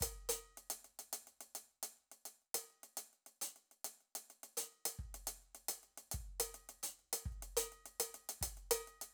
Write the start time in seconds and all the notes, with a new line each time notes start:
0.00 kick, closed hi-hat, hi-hat pedal
0.29 closed hi-hat
0.42 closed hi-hat
0.57 closed hi-hat
0.70 closed hi-hat
0.84 closed hi-hat
0.99 closed hi-hat
1.13 closed hi-hat
1.27 closed hi-hat
1.41 closed hi-hat
1.55 closed hi-hat
1.71 closed hi-hat
1.83 closed hi-hat
1.97 closed hi-hat
2.11 closed hi-hat
2.25 closed hi-hat
2.42 closed hi-hat
2.54 closed hi-hat
2.70 closed hi-hat
2.83 closed hi-hat
2.97 closed hi-hat
3.13 closed hi-hat
3.26 closed hi-hat
3.41 closed hi-hat
3.56 closed hi-hat
3.71 closed hi-hat
3.84 closed hi-hat
4.00 closed hi-hat
4.15 closed hi-hat
4.30 closed hi-hat
4.43 closed hi-hat
4.57 closed hi-hat
4.72 closed hi-hat
4.85 closed hi-hat
4.99 kick
5.14 closed hi-hat
5.27 closed hi-hat
5.42 closed hi-hat
5.55 closed hi-hat
5.68 closed hi-hat
5.83 closed hi-hat
5.97 closed hi-hat
6.11 kick, closed hi-hat
6.40 closed hi-hat
6.54 closed hi-hat
6.69 closed hi-hat
6.83 closed hi-hat
6.99 closed hi-hat
7.13 closed hi-hat
7.25 kick
7.32 closed hi-hat
7.42 closed hi-hat
7.57 closed hi-hat
7.72 closed hi-hat
7.86 closed hi-hat
8.00 closed hi-hat
8.14 closed hi-hat
8.29 closed hi-hat
8.41 kick, closed hi-hat
8.57 closed hi-hat
8.71 closed hi-hat
8.87 closed hi-hat
9.01 closed hi-hat